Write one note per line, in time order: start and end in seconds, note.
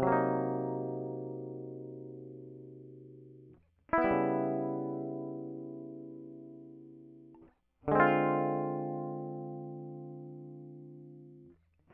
0.00 3.61 C3
0.00 3.59 F#3
0.08 3.61 A#3
0.13 3.58 D#4
3.94 7.49 E4
3.99 7.55 B3
4.06 7.51 G3
4.13 7.39 C#3
7.89 11.51 D3
7.89 11.54 G#3
7.96 11.56 C4
8.01 11.56 F4